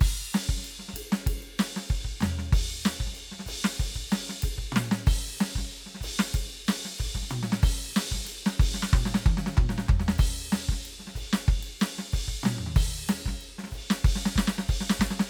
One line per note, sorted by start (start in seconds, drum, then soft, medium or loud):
0.01 kick loud
0.01 hi-hat pedal medium
0.01 crash loud
0.33 snare loud
0.33 hi-hat pedal medium
0.33 ride loud
0.49 kick medium
0.57 snare soft
0.64 hi-hat pedal medium
0.64 ride medium
0.79 snare soft
0.89 snare medium
0.94 kick soft
0.94 hi-hat pedal medium
0.94 ride loud
1.12 snare loud
1.27 kick medium
1.27 ride loud
1.43 ride medium
1.55 kick soft
1.55 hi-hat pedal medium
1.59 snare loud
1.59 ride loud
1.76 snare medium
1.90 kick medium
1.90 ride medium
2.05 kick medium
2.21 snare loud
2.21 floor tom loud
2.21 hi-hat pedal medium
2.39 snare medium
2.53 kick loud
2.53 ride loud
2.84 snare loud
2.84 hi-hat pedal medium
2.84 ride medium
3.00 kick medium
3.07 snare soft
3.15 hi-hat pedal medium
3.15 ride medium
3.32 snare medium
3.40 snare medium
3.46 kick soft
3.46 hi-hat pedal medium
3.46 ride loud
3.64 snare loud
3.80 kick medium
3.80 ride medium
3.95 kick medium
3.95 ride soft
4.10 snare loud
4.10 hi-hat pedal medium
4.10 ride loud
4.30 snare medium
4.43 kick medium
4.43 ride loud
4.58 kick medium
4.64 ride soft
4.72 snare loud
4.72 hi-hat pedal medium
4.72 mid tom loud
4.92 snare loud
5.07 kick loud
5.07 crash loud
5.38 snare loud
5.38 hi-hat pedal medium
5.38 ride medium
5.56 kick medium
5.56 snare medium
5.71 ride medium
5.86 snare soft
5.95 snare medium
6.01 kick medium
6.01 hi-hat pedal medium
6.01 ride loud
6.19 snare loud
6.34 kick medium
6.34 ride loud
6.50 ride soft
6.66 kick soft
6.66 snare loud
6.66 hi-hat pedal medium
6.66 ride loud
6.85 snare medium
6.99 kick medium
6.99 ride loud
7.15 kick medium
7.15 snare soft
7.22 snare soft
7.30 hi-hat pedal medium
7.30 mid tom loud
7.43 snare medium
7.52 snare loud
7.63 kick loud
7.63 crash loud
7.95 snare loud
7.95 hi-hat pedal medium
7.95 ride loud
8.12 kick medium
8.12 snare medium
8.25 snare soft
8.25 hi-hat pedal medium
8.25 ride medium
8.46 snare loud
8.60 kick loud
8.60 ride loud
8.74 snare medium
8.83 snare loud
8.93 kick loud
8.93 mid tom loud
9.06 snare loud
9.15 snare loud
9.26 kick loud
9.26 high tom loud
9.38 snare medium
9.47 snare loud
9.57 kick loud
9.57 mid tom loud
9.70 snare medium
9.78 snare loud
9.89 kick loud
9.89 floor tom loud
10.00 snare medium
10.08 snare loud
10.16 kick soft
10.16 crash loud
10.20 kick loud
10.52 snare loud
10.52 hi-hat pedal medium
10.52 ride loud
10.69 kick medium
10.69 snare medium
10.84 hi-hat pedal medium
10.84 ride medium
11.00 snare soft
11.07 snare medium
11.16 kick medium
11.16 hi-hat pedal medium
11.16 ride medium
11.33 snare loud
11.48 kick loud
11.48 ride medium
11.63 ride medium
11.79 snare loud
11.79 hi-hat pedal medium
11.79 ride medium
11.99 snare medium
12.13 kick medium
12.13 ride loud
12.28 kick medium
12.43 snare loud
12.43 hi-hat pedal medium
12.43 mid tom loud
12.59 floor tom loud
12.67 high tom medium
12.76 kick loud
12.76 crash loud
13.09 snare loud
13.09 hi-hat pedal medium
13.09 ride loud
13.26 kick medium
13.26 snare medium
13.39 hi-hat pedal soft
13.39 ride medium
13.59 snare medium
13.64 snare medium
13.67 snare medium
13.67 hi-hat pedal medium
13.72 kick soft
13.72 ride medium
13.90 snare loud
14.05 kick loud
14.05 ride loud
14.16 snare medium
14.36 kick medium
14.36 snare loud
14.48 snare loud
14.59 snare loud
14.69 kick medium
14.69 ride loud
14.81 snare medium
14.90 snare loud
15.00 kick medium
15.00 snare loud
15.11 snare medium
15.20 snare loud